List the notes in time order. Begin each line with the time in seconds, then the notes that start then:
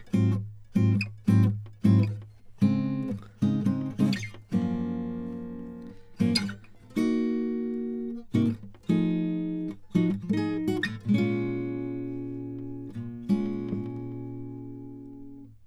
0.14 G#2 F#3 C4 F4
0.77 G#2 F#3 C4 F4
1.29 G#2 F#3 C4 E4
1.85 G#2 F#3 C4 E4
2.63 C#3 G#3 C4
3.43 C#3 G#3 C4 D#4
3.67 C#3 G#3 C4 D#4
4.00 C#3 G#3 C4 D#4
4.53 F#2 F3 A#3 C#4
6.21 F#2 F3 A#3 C#4
6.92 C3
6.98 A#3 D#4 F#4
8.35 C3 A#3 D#4 F#4
8.90 F3 D#4 G#4
9.96 F3 D#4 F#4
10.24 F3
10.35 D#4 G#4
10.69 F#4
10.85 D3
11.06 A#2
11.15 C#4 F4
11.28 G#3
12.96 A#2
13.30 G#3 C#4 F4